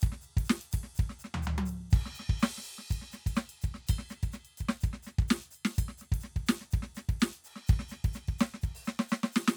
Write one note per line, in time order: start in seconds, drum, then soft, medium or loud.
0.01 kick loud
0.01 hi-hat pedal medium
0.01 ride medium
0.13 snare soft
0.22 hi-hat pedal medium
0.38 kick medium
0.38 ride medium
0.46 hi-hat pedal medium
0.50 snare loud
0.62 ride medium
0.72 kick medium
0.72 hi-hat pedal medium
0.72 ride loud
0.84 snare soft
0.96 hi-hat pedal medium
0.96 ride medium
1.00 kick medium
1.10 snare soft
1.20 hi-hat pedal medium
1.25 snare soft
1.35 floor tom loud
1.43 hi-hat pedal medium
1.48 floor tom loud
1.59 high tom loud
1.66 hi-hat pedal medium
1.66 ride medium
1.91 kick loud
1.91 hi-hat pedal medium
1.91 ride medium
2.06 snare soft
2.15 hi-hat pedal medium
2.20 snare soft
2.30 kick medium
2.40 snare loud
2.40 hi-hat pedal medium
2.40 crash medium
2.58 snare soft
2.64 hi-hat pedal medium
2.64 ride soft
2.79 snare soft
2.90 kick medium
2.90 hi-hat pedal medium
2.90 ride medium
3.02 snare soft
3.12 snare soft
3.12 hi-hat pedal medium
3.27 kick medium
3.27 ride bell medium
3.36 snare loud
3.36 hi-hat pedal medium
3.50 ride bell medium
3.62 kick medium
3.62 hi-hat pedal medium
3.62 ride bell soft
3.75 snare soft
3.88 kick loud
3.88 hi-hat pedal medium
3.88 ride bell loud
3.99 snare soft
4.10 snare soft
4.10 hi-hat pedal medium
4.24 kick medium
4.24 ride bell soft
4.33 snare soft
4.33 hi-hat pedal medium
4.46 ride bell soft
4.58 kick medium
4.58 hi-hat pedal medium
4.58 ride bell soft
4.70 snare loud
4.81 kick medium
4.81 hi-hat pedal medium
4.81 ride bell soft
4.94 snare soft
5.03 hi-hat pedal medium
5.08 snare soft
5.08 ride bell soft
5.19 kick loud
5.19 ride bell soft
5.29 snare loud
5.29 hi-hat pedal medium
5.43 ride bell soft
5.51 hi-hat pedal medium
5.55 ride bell soft
5.66 snare loud
5.76 kick medium
5.76 hi-hat pedal medium
5.76 ride bell medium
5.89 snare soft
5.99 snare soft
5.99 hi-hat pedal medium
5.99 ride soft
6.13 kick medium
6.13 ride medium
6.21 snare soft
6.21 hi-hat pedal medium
6.37 kick medium
6.37 ride soft
6.47 snare loud
6.47 hi-hat pedal medium
6.47 ride medium
6.62 snare soft
6.71 kick medium
6.71 hi-hat pedal medium
6.71 ride medium
6.83 snare medium
6.96 snare medium
6.96 hi-hat pedal medium
6.96 ride soft
7.10 kick medium
7.10 ride medium
7.21 snare loud
7.21 hi-hat pedal medium
7.34 ride medium
7.45 hi-hat pedal medium
7.45 ride medium
7.57 snare soft
7.67 kick loud
7.67 hi-hat pedal medium
7.67 ride medium
7.80 snare medium
7.89 snare soft
7.89 hi-hat pedal medium
7.89 ride soft
8.05 kick medium
8.05 ride medium
8.14 snare soft
8.14 hi-hat pedal medium
8.29 kick medium
8.29 ride soft
8.39 snare loud
8.39 hi-hat pedal medium
8.39 ride medium
8.55 snare soft
8.62 kick medium
8.62 hi-hat pedal medium
8.62 ride soft
8.76 open hi-hat medium
8.85 snare medium
8.85 hi-hat pedal medium
9.00 snare loud
9.09 snare loud
9.09 hi-hat pedal medium
9.24 snare loud
9.33 snare loud
9.33 hi-hat pedal medium
9.48 snare loud